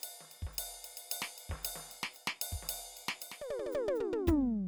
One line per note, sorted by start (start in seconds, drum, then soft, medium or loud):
0.01 hi-hat pedal medium
0.01 ride bell loud
0.21 snare soft
0.32 ride soft
0.43 kick soft
0.47 snare soft
0.54 snare soft
0.54 hi-hat pedal medium
0.59 ride bell loud
0.85 ride medium
0.98 ride medium
1.10 hi-hat pedal medium
1.10 ride bell loud
1.23 snare medium
1.39 ride medium
1.50 kick soft
1.50 snare soft
1.64 hi-hat pedal medium
1.64 ride bell loud
1.76 snare soft
1.92 ride medium
2.04 snare loud
2.14 hi-hat pedal medium
2.14 ride soft
2.28 snare loud
2.42 ride loud
2.53 kick soft
2.63 snare soft
2.69 hi-hat pedal medium
2.69 ride loud
2.98 ride medium
3.09 snare loud
3.21 hi-hat pedal medium
3.21 ride medium
3.32 snare soft
3.42 hi-hat pedal soft
3.42 high tom medium
3.51 high tom medium
3.60 high tom medium
3.67 high tom medium
3.72 hi-hat pedal medium
3.72 high tom loud
3.88 high tom loud
3.96 hi-hat pedal medium
4.01 mid tom medium
4.13 mid tom loud
4.28 kick medium
4.28 hi-hat pedal loud
4.28 floor tom loud
4.42 kick soft